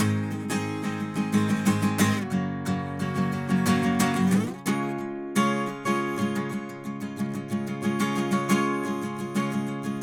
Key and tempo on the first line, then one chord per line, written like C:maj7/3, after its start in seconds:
C# major, 90 BPM
0.00 G#:maj
2.03 F#:maj
4.69 C#:maj